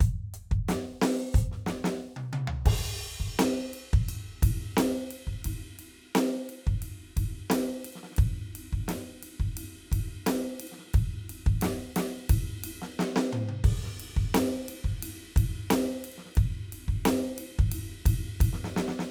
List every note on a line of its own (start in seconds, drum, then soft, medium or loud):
0.01 closed hi-hat medium
0.01 kick loud
0.34 closed hi-hat medium
0.52 kick loud
0.69 open hi-hat loud
0.69 snare loud
1.02 open hi-hat loud
1.02 snare loud
1.35 open hi-hat loud
1.35 kick loud
1.52 snare soft
1.67 snare loud
1.85 snare loud
2.17 high tom loud
2.33 high tom loud
2.48 floor tom loud
2.66 kick loud
2.66 crash loud
3.20 kick medium
3.39 snare loud
3.39 ride bell loud
3.74 ride medium
3.94 kick loud
4.09 ride bell medium
4.43 kick loud
4.43 ride loud
4.77 snare loud
4.77 ride loud
5.11 ride medium
5.27 kick medium
5.45 kick medium
5.45 ride loud
5.80 ride medium
6.16 snare loud
6.16 hi-hat pedal soft
6.16 ride loud
6.50 ride medium
6.67 kick loud
6.67 snare soft
6.83 ride medium
7.17 kick loud
7.17 ride loud
7.51 snare loud
7.51 ride loud
7.85 ride medium
7.93 snare soft
7.93 ride soft
8.04 snare soft
8.12 snare soft
8.17 kick loud
8.17 ride medium
8.56 ride medium
8.73 kick medium
8.89 snare loud
8.89 ride loud
9.23 ride medium
9.40 kick medium
9.58 ride loud
9.92 kick loud
9.92 ride loud
10.27 snare loud
10.27 ride loud
10.60 ride loud
10.68 ride medium
10.72 snare soft
10.79 snare soft
10.87 snare soft
10.94 kick loud
10.94 ride medium
11.30 ride medium
11.47 kick loud
11.62 snare loud
11.62 ride loud
11.97 snare loud
11.97 ride loud
12.30 kick loud
12.30 ride loud
12.64 ride loud
12.82 snare medium
13.00 snare loud
13.16 snare loud
13.33 mid tom loud
13.49 high tom medium
13.64 kick loud
13.64 crash medium
13.85 snare soft
14.00 ride medium
14.17 kick loud
14.35 snare loud
14.35 ride loud
14.69 ride loud
14.85 kick medium
15.03 ride loud
15.37 kick loud
15.37 ride loud
15.71 snare loud
15.71 ride loud
16.05 ride medium
16.12 ride medium
16.18 snare soft
16.26 snare soft
16.36 kick loud
16.36 ride medium
16.73 ride medium
16.89 kick medium
17.06 snare loud
17.06 ride loud
17.39 ride loud
17.59 kick loud
17.72 ride loud
18.06 kick loud
18.06 ride loud
18.41 kick loud
18.41 ride loud
18.53 snare medium
18.65 snare medium
18.77 snare loud
18.88 snare medium
19.00 snare loud